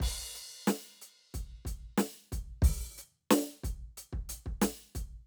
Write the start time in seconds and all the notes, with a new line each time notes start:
0.00 kick, crash
0.35 closed hi-hat
0.67 closed hi-hat, snare
1.02 closed hi-hat
1.34 closed hi-hat, kick
1.65 closed hi-hat, kick
1.98 closed hi-hat, snare
2.32 closed hi-hat, kick
2.62 open hi-hat, kick
2.98 open hi-hat, hi-hat pedal
3.31 closed hi-hat, snare
3.63 closed hi-hat, kick
3.97 closed hi-hat
4.13 kick
4.29 closed hi-hat
4.46 kick
4.62 closed hi-hat, snare
4.95 closed hi-hat, kick